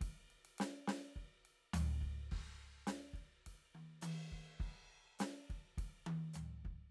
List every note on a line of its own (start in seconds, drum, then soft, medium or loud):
0.01 kick soft
0.01 ride medium
0.30 ride soft
0.45 ride soft
0.58 snare medium
0.58 hi-hat pedal medium
0.58 ride soft
0.88 snare medium
0.88 ride medium
1.16 kick soft
1.45 ride soft
1.74 floor tom medium
1.74 hi-hat pedal medium
1.74 ride medium
2.01 kick soft
2.01 ride soft
2.31 kick soft
2.31 crash soft
2.87 snare medium
2.87 hi-hat pedal medium
2.87 ride soft
3.13 kick soft
3.13 ride soft
3.46 kick soft
3.46 ride soft
3.75 high tom soft
4.02 hi-hat pedal medium
4.02 high tom medium
4.02 ride soft
4.32 kick soft
4.60 kick soft
4.60 crash soft
5.19 snare medium
5.19 hi-hat pedal medium
5.19 ride medium
5.50 kick soft
5.50 ride soft
5.78 kick soft
5.78 ride soft
6.06 high tom medium
6.34 floor tom soft
6.34 hi-hat pedal medium
6.65 kick soft